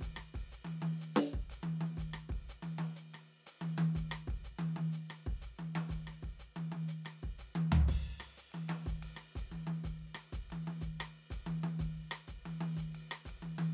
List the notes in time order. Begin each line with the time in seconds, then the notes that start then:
0.01 kick, hi-hat pedal, ride
0.17 cross-stick
0.34 kick, ride
0.52 hi-hat pedal
0.65 high tom, ride
0.82 high tom, ride
1.01 hi-hat pedal
1.16 snare, ride
1.24 hi-hat pedal
1.34 kick
1.50 hi-hat pedal, ride
1.63 high tom
1.81 high tom, ride
1.97 kick, hi-hat pedal, ride
2.14 cross-stick
2.30 kick, ride
2.49 hi-hat pedal
2.63 high tom, ride
2.71 hi-hat pedal
2.79 high tom, ride
2.96 hi-hat pedal
3.14 cross-stick, ride
3.47 hi-hat pedal, ride
3.61 high tom
3.68 hi-hat pedal
3.78 high tom, ride
3.95 kick, hi-hat pedal, ride
4.12 cross-stick
4.28 kick, ride
4.44 hi-hat pedal
4.59 high tom, ride
4.76 high tom, ride
4.93 hi-hat pedal
5.10 cross-stick, ride
5.27 kick
5.42 hi-hat pedal, ride
5.59 high tom
5.64 hi-hat pedal
5.76 high tom, ride
5.90 kick, hi-hat pedal, ride
6.07 cross-stick
6.12 hi-hat pedal
6.23 kick, ride
6.40 hi-hat pedal
6.56 high tom, ride
6.62 hi-hat pedal
6.72 high tom, ride
6.88 hi-hat pedal
7.05 cross-stick, ride
7.10 hi-hat pedal
7.23 kick
7.39 hi-hat pedal, ride
7.55 high tom
7.61 hi-hat pedal
7.72 floor tom
7.88 kick, hi-hat pedal, crash
8.20 cross-stick, ride
8.37 hi-hat pedal
8.52 high tom, ride
8.60 hi-hat pedal
8.69 high tom, ride
8.86 kick, hi-hat pedal
9.03 ride
9.17 cross-stick
9.36 kick, hi-hat pedal, ride
9.52 high tom
9.59 hi-hat pedal
9.67 high tom, ride
9.84 kick, hi-hat pedal, ride
10.07 hi-hat pedal
10.15 cross-stick, ride
10.33 kick, hi-hat pedal
10.50 hi-hat pedal, high tom, ride
10.67 high tom, ride
10.82 kick, hi-hat pedal
11.00 cross-stick, ride
11.31 kick, hi-hat pedal, ride
11.47 high tom
11.53 hi-hat pedal
11.64 high tom, ride
11.80 kick, hi-hat pedal, ride
12.01 hi-hat pedal
12.11 cross-stick, ride
12.28 kick, hi-hat pedal
12.46 high tom, ride
12.61 high tom, ride
12.77 kick, hi-hat pedal
12.95 ride
13.11 cross-stick
13.26 kick, hi-hat pedal, ride
13.43 high tom
13.59 high tom, ride